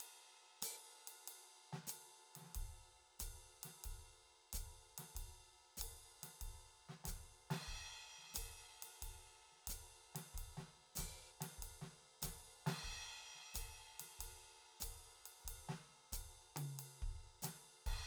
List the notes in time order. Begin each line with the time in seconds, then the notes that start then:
0.01 ride
0.62 hi-hat pedal, ride
1.08 ride
1.28 ride
1.73 snare
1.87 hi-hat pedal, ride
2.36 snare, ride
2.42 snare
2.45 snare
2.49 snare
2.53 kick, snare, ride
3.20 kick, hi-hat pedal, ride
3.64 snare, ride
3.85 kick, ride
4.53 kick, hi-hat pedal, ride
4.98 snare, ride
5.16 kick, ride
5.78 kick, hi-hat pedal
5.82 ride
6.23 snare, ride
6.42 kick, ride
6.89 snare
7.05 kick, snare, hi-hat pedal, ride
7.51 snare, ride
7.68 kick
8.18 snare
8.23 snare
8.26 snare
8.28 snare
8.35 kick, hi-hat pedal, ride
8.83 snare, ride
9.02 kick, ride
9.52 snare
9.68 kick, hi-hat pedal, ride
10.15 snare, ride
10.35 kick, ride
10.58 snare
10.96 kick, snare, hi-hat pedal, ride
11.41 snare, ride
11.59 kick
11.63 ride
11.82 snare
12.23 kick, snare, hi-hat pedal, ride
12.67 snare, ride
12.84 kick
13.35 snare
13.55 kick, hi-hat pedal, ride
14.00 snare, ride
14.20 kick, ride
14.81 kick, hi-hat pedal, ride
15.26 ride
15.40 hi-hat pedal
15.45 kick, ride
15.69 snare
16.13 kick, hi-hat pedal, ride
16.57 high tom, ride
16.80 ride
17.02 kick
17.43 snare, hi-hat pedal, ride
17.87 kick, ride